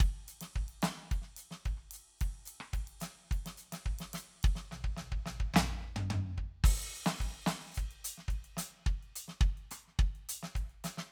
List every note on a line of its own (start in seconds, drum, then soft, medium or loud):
0.01 kick loud
0.01 ride medium
0.16 snare soft
0.29 kick soft
0.29 hi-hat pedal medium
0.29 ride medium
0.42 snare medium
0.42 ride medium
0.54 kick medium
0.54 hi-hat pedal soft
0.69 ride soft
0.83 snare medium
0.83 hi-hat pedal medium
0.83 ride medium
0.97 snare soft
1.12 kick medium
1.12 ride soft
1.23 snare soft
1.37 hi-hat pedal medium
1.37 ride medium
1.52 snare medium
1.66 kick medium
1.66 ride soft
1.78 cross-stick soft
1.92 hi-hat pedal medium
1.92 ride medium
2.19 kick medium
2.19 hi-hat pedal soft
2.19 ride medium
2.32 snare soft
2.46 hi-hat pedal medium
2.46 ride medium
2.61 cross-stick medium
2.74 kick medium
2.74 ride soft
2.88 ride soft
3.01 snare medium
3.01 hi-hat pedal medium
3.01 ride medium
3.17 snare soft
3.32 kick medium
3.32 ride soft
3.47 snare medium
3.47 ride medium
3.58 hi-hat pedal medium
3.73 snare medium
3.73 ride medium
3.87 kick medium
4.00 snare medium
4.00 ride medium
4.14 snare medium
4.14 hi-hat pedal medium
4.14 ride medium
4.44 kick loud
4.44 ride medium
4.56 snare medium
4.72 snare soft
4.72 floor tom medium
4.85 kick medium
4.98 snare medium
4.98 floor tom medium
5.13 kick medium
5.27 snare medium
5.27 floor tom medium
5.41 kick medium
5.55 snare loud
5.55 floor tom loud
5.97 high tom loud
6.11 high tom loud
6.39 kick medium
6.65 open hi-hat loud
6.65 kick loud
6.65 crash medium
7.07 snare medium
7.21 kick medium
7.21 open hi-hat soft
7.35 open hi-hat soft
7.47 open hi-hat medium
7.47 snare medium
7.61 snare soft
7.75 kick medium
7.75 hi-hat pedal medium
7.80 closed hi-hat soft
7.92 closed hi-hat soft
8.05 closed hi-hat loud
8.18 snare soft
8.29 kick medium
8.29 closed hi-hat soft
8.45 closed hi-hat soft
8.58 closed hi-hat medium
8.58 snare medium
8.75 snare soft
8.87 kick medium
8.87 snare soft
8.87 closed hi-hat soft
9.03 closed hi-hat soft
9.16 closed hi-hat medium
9.29 snare soft
9.42 kick loud
9.42 closed hi-hat soft
9.58 closed hi-hat soft
9.72 closed hi-hat medium
9.72 cross-stick medium
9.88 snare soft
10.00 kick loud
10.00 closed hi-hat soft
10.16 closed hi-hat soft
10.30 closed hi-hat loud
10.44 snare medium
10.56 kick medium
10.56 closed hi-hat soft
10.70 closed hi-hat soft
10.85 closed hi-hat medium
10.85 snare medium
10.98 snare medium